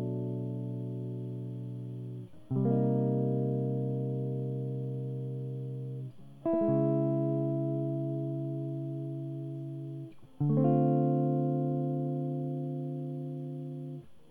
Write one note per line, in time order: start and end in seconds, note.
2.52 6.09 C3
2.56 6.12 G3
2.65 6.01 A#3
2.71 6.11 D#4
6.46 10.13 E4
6.54 6.60 B3
6.62 9.98 G#3
6.70 10.07 C#3
10.41 14.02 D3
10.50 13.07 A3
10.57 13.99 C4
10.64 14.03 F4